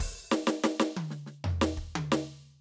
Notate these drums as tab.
Hi-hat    |o---------------|
Snare     |--oooo-oo-o--o--|
High tom  |------o-----o---|
Floor tom |---------o------|
Kick      |o----------o----|